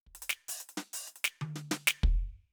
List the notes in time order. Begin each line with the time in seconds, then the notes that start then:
0.06 kick
0.15 closed hi-hat
0.22 closed hi-hat
0.29 snare
0.48 hi-hat pedal
0.60 closed hi-hat
0.69 closed hi-hat
0.77 snare
0.93 hi-hat pedal
1.07 closed hi-hat
1.16 closed hi-hat
1.24 snare
1.41 high tom
1.56 snare
1.71 snare
1.87 snare
2.03 kick